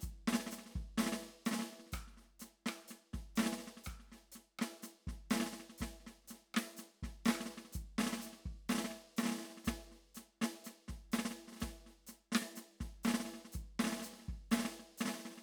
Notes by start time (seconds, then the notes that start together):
0.01 kick, snare, hi-hat pedal
0.28 snare
0.33 snare
0.34 snare
0.40 snare
0.47 snare
0.51 snare, hi-hat pedal
0.58 snare
0.66 snare
0.71 snare
0.76 kick, snare
0.98 snare, hi-hat pedal
1.00 snare
1.03 snare
1.06 snare
1.12 snare
1.18 snare
1.22 snare
1.29 snare
1.46 snare, hi-hat pedal
1.51 snare
1.53 snare
1.56 snare
1.59 snare
1.62 snare
1.66 snare
1.73 snare
1.79 snare
1.87 snare
1.92 kick, cross-stick, snare, hi-hat pedal
2.08 snare
2.14 snare
2.17 snare
2.24 snare
2.29 snare
2.40 snare, hi-hat pedal
2.66 cross-stick, snare
2.88 snare, hi-hat pedal
3.13 kick, snare
3.36 snare, hi-hat pedal
3.40 snare
3.43 snare
3.46 snare
3.53 snare
3.58 snare
3.60 snare
3.67 snare
3.77 snare
3.84 kick, cross-stick, hi-hat pedal
4.00 snare
4.08 snare
4.12 snare
4.24 snare
4.32 snare, hi-hat pedal
4.59 cross-stick, snare
4.83 snare, hi-hat pedal
4.96 snare
4.99 snare
5.07 kick, snare
5.30 snare, hi-hat pedal
5.33 snare
5.36 snare
5.40 snare
5.42 snare
5.46 snare
5.51 snare
5.53 snare
5.60 snare
5.70 snare
5.78 kick, snare, hi-hat pedal
5.82 snare
5.90 snare
6.00 snare
6.07 snare
6.24 snare, hi-hat pedal
6.31 snare
6.54 cross-stick, snare
6.77 snare, hi-hat pedal
6.87 snare
6.93 snare
7.03 kick, snare
7.25 snare, hi-hat pedal
7.29 cross-stick, snare
7.35 cross-stick
7.41 snare
7.46 snare
7.50 snare
7.58 snare
7.65 snare
7.71 snare, hi-hat pedal
7.75 kick
7.98 snare
8.00 snare
8.03 snare
8.07 snare
8.09 snare
8.13 snare
8.17 snare
8.19 snare, hi-hat pedal
8.24 snare
8.26 snare
8.33 snare
8.39 snare
8.44 kick, snare
8.69 snare, hi-hat pedal
8.72 snare
8.75 snare
8.78 snare
8.80 snare
8.85 snare
8.91 snare
8.96 snare
9.17 snare, hi-hat pedal
9.23 snare
9.26 snare
9.29 snare
9.32 snare
9.35 snare
9.38 snare
9.41 snare
9.45 snare
9.50 snare
9.57 snare
9.64 kick, snare, hi-hat pedal
9.68 snare
9.81 snare
9.86 snare
9.90 snare
9.91 snare
10.15 snare, hi-hat pedal
10.42 snare
10.43 snare
10.64 snare, hi-hat pedal
10.88 kick, snare
11.12 snare, hi-hat pedal
11.19 snare
11.25 snare
11.31 snare
11.39 snare
11.44 snare
11.47 snare
11.53 snare
11.56 snare
11.60 snare, hi-hat pedal
11.62 kick, snare
11.69 snare
11.74 snare
11.77 snare
11.83 snare
11.86 snare
12.07 snare, hi-hat pedal
12.32 snare
12.35 snare
12.42 snare
12.56 snare, hi-hat pedal
12.81 kick, snare
13.04 snare, hi-hat pedal
13.08 snare
13.10 snare
13.14 snare
13.20 snare
13.25 snare
13.27 snare
13.34 snare
13.45 snare
13.52 kick, snare, hi-hat pedal
13.80 snare
13.84 snare
13.87 snare
13.90 snare
13.93 snare
13.97 snare
13.99 snare
14.02 snare, hi-hat pedal
14.06 snare
14.11 snare
14.13 snare
14.20 snare
14.22 snare
14.25 kick, snare
14.29 snare
14.51 snare, hi-hat pedal
14.57 snare
14.59 snare
14.62 snare
14.65 snare
14.68 snare
14.72 snare
14.79 snare
14.98 snare, hi-hat pedal
15.05 snare
15.08 snare
15.10 snare
15.14 snare
15.16 snare
15.19 snare
15.25 snare
15.30 snare
15.38 snare